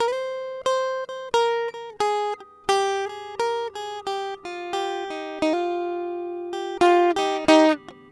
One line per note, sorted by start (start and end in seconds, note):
0.02 0.13 A#4
0.13 0.64 C5
0.68 1.07 C5
1.11 1.33 C5
1.36 1.70 A#4
1.70 1.98 A#4
2.02 2.39 G#4
2.71 3.07 G4
3.07 3.39 G#4
3.41 3.73 A#4
3.77 4.04 G#4
4.08 4.40 G4
4.47 5.08 F4
4.75 5.56 G4
5.12 5.42 D#4
5.44 5.55 D#4
5.55 6.80 F4
6.55 6.81 G4
6.83 7.18 F4
6.83 7.16 G4
7.18 7.48 D#4
7.18 7.43 G4
7.50 7.82 D#4
7.50 7.76 G4